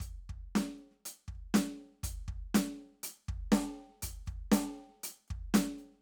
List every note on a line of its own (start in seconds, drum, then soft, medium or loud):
0.02 closed hi-hat medium
0.02 kick soft
0.02 snare soft
0.29 kick soft
0.29 closed hi-hat soft
0.55 closed hi-hat medium
0.55 snare loud
0.60 snare soft
0.78 closed hi-hat soft
0.91 snare soft
1.05 closed hi-hat loud
1.28 kick soft
1.28 closed hi-hat soft
1.35 kick soft
1.54 closed hi-hat loud
1.54 snare loud
1.59 snare soft
2.03 closed hi-hat loud
2.03 kick medium
2.28 kick medium
2.28 closed hi-hat soft
2.54 closed hi-hat loud
2.54 snare loud
3.03 closed hi-hat loud
3.26 kick medium
3.26 closed hi-hat soft
3.52 closed hi-hat medium
3.52 snare loud
4.02 closed hi-hat loud
4.02 kick soft
4.26 closed hi-hat soft
4.26 kick medium
4.52 closed hi-hat loud
4.52 snare loud
4.76 closed hi-hat soft
5.03 closed hi-hat loud
5.28 kick medium
5.28 closed hi-hat soft
5.54 closed hi-hat loud
5.54 snare loud
5.60 snare soft
5.78 closed hi-hat soft
5.93 snare soft